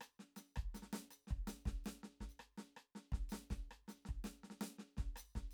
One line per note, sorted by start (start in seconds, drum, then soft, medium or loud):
0.01 cross-stick medium
0.01 hi-hat pedal soft
0.20 snare soft
0.36 snare soft
0.36 hi-hat pedal soft
0.56 kick soft
0.56 cross-stick medium
0.75 snare soft
0.75 hi-hat pedal soft
0.82 snare soft
0.93 snare medium
1.11 cross-stick soft
1.11 hi-hat pedal soft
1.27 kick soft
1.27 snare soft
1.48 snare medium
1.48 hi-hat pedal soft
1.66 kick soft
1.66 snare soft
1.84 snare medium
1.84 hi-hat pedal soft
2.04 snare soft
2.21 kick soft
2.21 snare soft
2.29 hi-hat pedal soft
2.40 cross-stick medium
2.58 snare soft
2.77 cross-stick medium
2.95 snare soft
3.12 kick soft
3.12 snare soft
3.30 snare medium
3.30 hi-hat pedal soft
3.51 kick soft
3.51 snare soft
3.71 cross-stick medium
3.88 snare soft
3.88 hi-hat pedal soft
4.05 kick soft
4.05 snare soft
4.24 snare medium
4.24 hi-hat pedal soft
4.44 snare soft
4.50 snare soft
4.61 snare medium
4.79 snare soft
4.97 kick soft
4.97 snare soft
4.99 snare soft
5.16 cross-stick medium
5.16 hi-hat pedal soft
5.35 kick soft
5.35 snare soft
5.51 hi-hat pedal soft